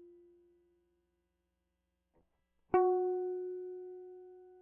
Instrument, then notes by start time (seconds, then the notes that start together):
electric guitar
2.74 F#4